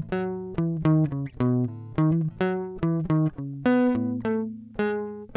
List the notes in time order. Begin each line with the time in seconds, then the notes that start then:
0.00 A#2
0.13 F#3
0.60 E3
0.86 D#3
1.14 C#3
1.41 B2
1.66 A2
1.99 D#3
2.14 E3
2.23 D#3
2.42 F#3
2.84 E3
3.11 D#3
3.40 C#3
3.67 B3
3.96 A2
4.26 A3
4.80 G#3